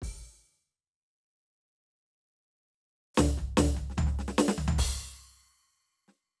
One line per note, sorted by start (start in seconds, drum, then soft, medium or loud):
0.02 open hi-hat medium
0.02 kick medium
3.14 snare loud
3.14 hi-hat pedal soft
3.19 floor tom loud
3.37 kick medium
3.37 floor tom soft
3.57 snare loud
3.57 floor tom loud
3.75 kick soft
3.75 floor tom medium
3.90 snare soft
3.97 kick medium
3.97 floor tom loud
4.07 snare soft
4.19 snare medium
4.28 snare medium
4.38 snare loud
4.48 snare loud
4.58 floor tom loud
4.78 kick medium
4.78 crash loud
6.08 snare soft